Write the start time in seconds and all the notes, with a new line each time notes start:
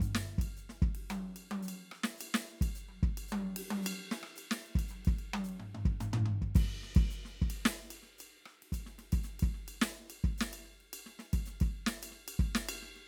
0.01 kick, snare, hi-hat pedal, ride, floor tom
0.15 snare
0.39 kick, ride bell
0.57 hi-hat pedal
0.70 snare
0.82 kick
0.95 ride
1.10 hi-hat pedal, high tom
1.37 ride bell
1.52 high tom
1.63 hi-hat pedal
1.69 ride bell
1.92 cross-stick
2.04 snare
2.18 hi-hat pedal, ride bell
2.35 snare
2.62 kick, ride bell
2.76 hi-hat pedal
2.89 high tom
3.03 kick
3.18 ride bell
3.29 hi-hat pedal, high tom
3.57 ride
3.71 high tom
3.83 hi-hat pedal, ride bell
4.12 snare
4.24 cross-stick
4.36 hi-hat pedal, ride bell
4.51 snare
4.67 ride
4.76 kick, ride bell
4.89 hi-hat pedal, high tom
5.05 kick, ride bell
5.19 ride bell
5.34 high tom
5.45 hi-hat pedal
5.49 ride
5.60 floor tom
5.75 floor tom
5.86 kick
6.01 floor tom, hi-hat pedal
6.14 floor tom
6.26 floor tom
6.42 kick
6.55 kick, hi-hat pedal, ride, crash
6.84 snare
6.95 kick, ride bell
7.11 snare, hi-hat pedal
7.26 snare
7.42 kick
7.51 ride bell
7.66 snare, hi-hat pedal
7.91 ride bell
8.03 snare
8.19 hi-hat pedal, ride bell
8.46 cross-stick
8.63 ride
8.73 kick, hi-hat pedal, ride bell
8.87 snare
8.99 snare, ride
9.13 kick, ride bell
9.24 snare, hi-hat pedal
9.40 kick, ride bell
9.55 snare
9.69 ride bell
9.82 snare, hi-hat pedal
10.10 ride bell
10.25 kick
10.38 snare, hi-hat pedal
10.54 ride bell
10.65 snare
10.75 snare
10.81 ride
10.93 hi-hat pedal, ride bell
11.07 snare
11.20 snare, ride
11.34 kick, ride bell
11.46 snare, hi-hat pedal
11.61 kick, ride bell
11.76 ride
11.87 snare
12.03 hi-hat pedal, ride bell
12.12 snare
12.28 ride bell
12.40 kick
12.55 snare, hi-hat pedal
12.69 ride bell
12.83 snare
12.96 snare, ride